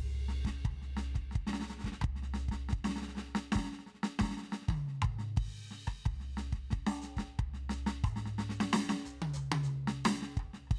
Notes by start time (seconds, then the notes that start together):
0.28 snare
0.45 kick, snare
0.65 kick, floor tom
0.82 snare
0.97 snare
1.01 hi-hat pedal
1.14 kick, snare
1.31 snare
1.35 kick
1.47 snare
1.53 snare
1.60 snare
1.62 snare
1.68 snare, hi-hat pedal
1.77 snare
1.79 snare
1.84 kick, snare
1.92 snare
2.01 kick, floor tom
2.16 snare
2.23 snare
2.34 snare, hi-hat pedal
2.48 kick, snare
2.69 kick, snare
2.78 kick
2.84 snare
2.89 snare
2.94 snare
2.96 snare
3.02 snare
3.08 snare
3.15 snare
3.17 snare
3.22 snare
3.28 snare
3.35 snare
3.52 kick, snare
3.57 snare
3.62 snare
3.65 snare
3.68 snare
3.72 snare
3.79 snare
3.86 snare
3.94 snare
4.00 snare
4.03 snare
4.19 kick, snare
4.23 snare
4.29 snare
4.31 snare
4.37 snare
4.43 snare
4.49 snare
4.52 snare
4.62 snare
4.68 kick, snare, high tom
4.73 hi-hat pedal
4.88 snare
4.92 snare
5.02 kick, mid tom
5.13 kick
5.19 snare
5.37 kick, crash
5.69 snare, hi-hat pedal
5.87 kick, cross-stick
6.05 kick, floor tom
6.20 snare
6.37 snare, hi-hat pedal
6.53 kick, snare
6.71 kick, snare
6.87 snare
7.02 snare, hi-hat pedal
7.17 kick, snare
7.39 kick, floor tom
7.54 snare
7.70 snare, hi-hat pedal
7.87 snare
8.04 kick, hi-hat pedal, mid tom
8.13 kick, snare
8.26 snare
8.38 snare
8.49 snare, hi-hat pedal
8.60 snare
8.73 snare
8.77 hi-hat pedal
8.89 snare
9.05 floor tom, hi-hat pedal
9.22 high tom
9.34 floor tom, hi-hat pedal
9.52 high tom
9.63 hi-hat pedal
9.68 floor tom
9.87 snare
10.05 snare, hi-hat pedal
10.22 snare
10.37 kick, floor tom
10.54 snare
10.67 kick, cross-stick
10.72 crash